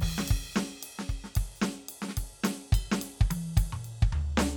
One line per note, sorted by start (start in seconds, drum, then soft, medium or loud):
0.01 kick medium
0.01 crash loud
0.18 snare loud
0.28 kick loud
0.28 ride loud
0.52 hi-hat pedal medium
0.56 snare loud
0.83 ride loud
0.99 snare medium
1.09 kick medium
1.09 ride soft
1.24 snare medium
1.36 kick loud
1.36 ride loud
1.56 hi-hat pedal medium
1.62 snare loud
1.89 ride loud
2.02 snare medium
2.09 snare medium
2.17 kick medium
2.17 ride loud
2.44 snare loud
2.44 ride loud
2.73 kick loud
2.73 ride bell loud
2.92 snare loud
3.02 ride loud
3.21 kick loud
3.31 high tom loud
3.31 ride loud
3.57 kick loud
3.57 ride loud
3.73 mid tom medium
3.85 ride medium
4.03 kick loud
4.13 floor tom loud
4.38 snare loud